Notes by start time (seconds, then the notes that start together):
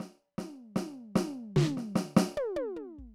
0.00 snare
0.38 snare, floor tom
0.76 snare, floor tom
1.16 snare, floor tom
1.56 snare, floor tom
1.77 snare
1.96 snare
2.17 snare
2.37 high tom
2.56 high tom
2.76 mid tom
2.98 kick